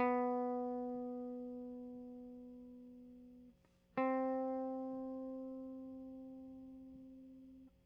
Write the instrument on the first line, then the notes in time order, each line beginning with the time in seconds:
electric guitar
0.00 B3
3.98 C4